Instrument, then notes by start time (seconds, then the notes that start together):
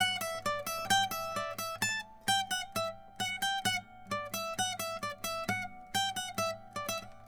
acoustic guitar
0.01 F#5
0.22 E5
0.46 D5
0.67 E5
0.91 G5
1.12 E5
1.37 D5
1.59 E5
1.83 A5
2.29 G5
2.51 F#5
2.77 E5
3.21 F#5
3.43 G5
3.66 F#5
4.12 D5
4.34 E5
4.59 F#5
4.80 E5
5.04 D5
5.25 E5
5.49 F#5
5.95 G5
6.17 F#5
6.39 E5
6.89 E5
6.99 F#5